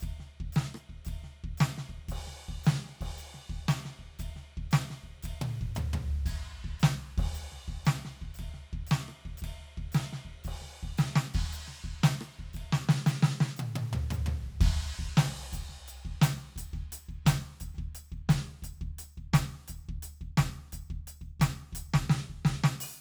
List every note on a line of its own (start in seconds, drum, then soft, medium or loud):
0.01 kick medium
0.01 ride medium
0.01 percussion medium
0.21 snare soft
0.41 kick medium
0.53 snare loud
0.53 ride medium
0.53 percussion medium
0.75 cross-stick medium
0.90 kick soft
1.06 kick medium
1.06 ride medium
1.06 percussion medium
1.24 snare soft
1.45 kick medium
1.58 snare loud
1.58 percussion medium
1.63 ride medium
1.79 snare medium
1.90 kick soft
2.09 kick medium
2.09 crash medium
2.09 percussion medium
2.28 snare soft
2.49 kick medium
2.65 snare loud
2.65 ride medium
2.65 percussion medium
2.87 snare soft
3.02 kick medium
3.02 crash medium
3.19 ride soft
3.19 percussion medium
3.35 snare soft
3.50 kick medium
3.69 snare loud
3.69 ride medium
3.69 percussion medium
3.86 snare soft
4.00 kick soft
4.20 kick medium
4.20 ride medium
4.20 percussion medium
4.37 snare soft
4.58 kick medium
4.72 snare loud
4.72 ride medium
4.72 percussion medium
4.91 snare soft
5.04 kick soft
5.24 kick medium
5.24 ride medium
5.24 percussion medium
5.42 high tom loud
5.62 kick medium
5.76 floor tom loud
5.76 percussion medium
5.94 floor tom loud
6.09 kick soft
6.27 kick medium
6.27 ride medium
6.27 percussion medium
6.27 crash medium
6.65 kick medium
6.81 snare loud
6.81 percussion medium
7.19 kick medium
7.19 crash medium
7.35 ride soft
7.35 percussion medium
7.53 snare soft
7.69 kick medium
7.86 snare loud
7.86 ride medium
7.86 percussion medium
8.06 snare medium
8.22 kick soft
8.35 percussion medium
8.40 kick medium
8.40 ride medium
8.55 snare soft
8.74 kick medium
8.88 percussion medium
8.92 snare loud
8.92 ride medium
9.09 cross-stick soft
9.26 kick soft
9.38 percussion medium
9.43 kick medium
9.43 ride medium
9.61 snare soft
9.78 kick medium
9.93 snare loud
9.93 ride medium
9.93 percussion medium
10.14 snare medium
10.26 kick soft
10.45 kick medium
10.45 crash medium
10.45 percussion medium
10.63 snare soft
10.84 kick medium
10.99 snare loud
10.99 ride medium
10.99 percussion medium
11.16 snare loud
11.35 kick medium
11.35 crash medium
11.54 ride soft
11.54 percussion medium
11.69 snare soft
11.85 kick medium
12.04 snare loud
12.04 ride medium
12.04 percussion medium
12.22 cross-stick medium
12.40 kick soft
12.54 kick soft
12.54 ride medium
12.54 percussion soft
12.73 snare loud
12.90 snare loud
13.07 snare loud
13.07 percussion medium
13.23 snare loud
13.41 snare loud
13.57 high tom loud
13.57 percussion medium
13.77 high tom loud
13.94 floor tom loud
14.11 floor tom loud
14.11 percussion medium
14.27 floor tom loud
14.43 kick soft
14.62 kick loud
14.62 ride medium
14.62 crash loud
15.00 kick medium
15.18 snare loud
15.18 crash medium
15.54 kick medium
15.54 percussion medium
15.70 snare soft
15.89 percussion medium
16.06 kick medium
16.22 snare loud
16.22 percussion loud
16.38 snare soft
16.57 kick soft
16.57 percussion loud
16.74 kick medium
16.74 snare soft
16.79 snare soft
16.93 percussion loud
17.09 kick soft
17.27 kick medium
17.27 snare loud
17.27 percussion loud
17.42 snare soft
17.61 kick soft
17.61 percussion medium
17.75 kick medium
17.75 snare soft
17.96 percussion medium
18.13 kick soft
18.30 kick medium
18.30 snare loud
18.30 percussion medium
18.45 cross-stick soft
18.63 kick soft
18.63 percussion medium
18.82 kick medium
18.99 percussion medium
19.18 kick soft
19.34 kick medium
19.34 snare loud
19.34 percussion loud
19.50 snare soft
19.57 snare soft
19.69 kick soft
19.69 percussion medium
19.90 kick medium
20.03 percussion medium
20.22 kick soft
20.38 kick medium
20.38 snare loud
20.38 percussion medium
20.73 kick soft
20.73 percussion medium
20.91 kick medium
21.08 percussion medium
21.22 kick soft
21.41 kick soft
21.41 snare loud
21.41 percussion loud
21.73 kick soft
21.73 percussion loud
21.95 kick medium
21.95 snare loud
22.10 snare loud
22.30 kick soft
22.46 kick soft
22.46 snare loud
22.65 snare loud
22.81 percussion loud